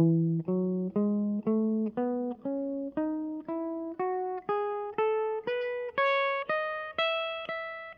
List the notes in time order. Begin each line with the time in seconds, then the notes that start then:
0.00 E3
0.49 F#3
0.96 G#3
1.47 A3
1.98 B3
2.46 C#4
2.97 D#4
3.49 E4
4.00 F#4
4.49 G#4
4.98 A4
5.47 B4
5.98 C#5
6.50 D#5
6.99 E5
7.49 E5